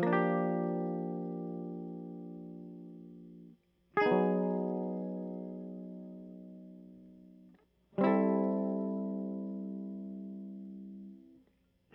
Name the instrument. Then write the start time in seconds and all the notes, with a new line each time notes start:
electric guitar
0.00 F3 A#3
0.07 D4
0.13 G4
3.98 G#4
4.02 D#4
4.07 B3
4.12 F#3
7.99 G3 C4
8.04 E4 A4